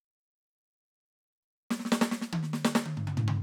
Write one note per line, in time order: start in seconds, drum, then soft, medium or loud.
1.71 snare loud
1.79 snare medium
1.85 snare medium
1.92 snare loud
2.01 snare loud
2.11 snare loud
2.33 high tom loud
2.43 snare soft
2.53 snare medium
2.65 snare loud
2.75 snare loud
2.86 high tom loud
2.97 floor tom loud
3.07 mid tom loud
3.17 floor tom loud
3.28 mid tom loud